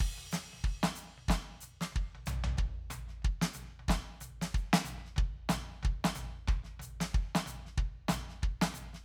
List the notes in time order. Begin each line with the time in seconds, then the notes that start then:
0.01 kick, floor tom
0.18 floor tom
0.32 snare, hi-hat pedal
0.54 floor tom
0.65 kick, floor tom
0.84 snare
0.96 hi-hat pedal
1.18 floor tom
1.29 kick, snare
1.50 floor tom
1.61 floor tom, hi-hat pedal
1.82 snare
1.93 kick, floor tom
2.15 floor tom
2.27 floor tom, hi-hat pedal
2.44 floor tom
2.58 kick, floor tom
2.91 cross-stick, floor tom, hi-hat pedal
3.08 snare
3.23 kick, floor tom
3.42 snare
3.54 floor tom, hi-hat pedal
3.80 floor tom
3.89 kick, snare, floor tom, hi-hat pedal
4.21 kick, floor tom, hi-hat pedal
4.42 snare
4.53 kick, floor tom
4.57 hi-hat pedal
4.74 snare
4.85 floor tom, hi-hat pedal
5.06 snare
5.17 kick, floor tom
5.50 snare, floor tom, hi-hat pedal
5.83 kick, floor tom
6.05 snare
6.16 floor tom, hi-hat pedal
6.48 kick, cross-stick, floor tom
6.64 snare
6.80 floor tom, hi-hat pedal
7.01 snare
7.14 kick, floor tom
7.36 snare
7.47 floor tom, hi-hat pedal
7.66 snare
7.78 kick, floor tom
8.09 snare, floor tom, hi-hat pedal
8.29 snare
8.43 kick, floor tom
8.62 snare
8.75 floor tom, hi-hat pedal
8.94 snare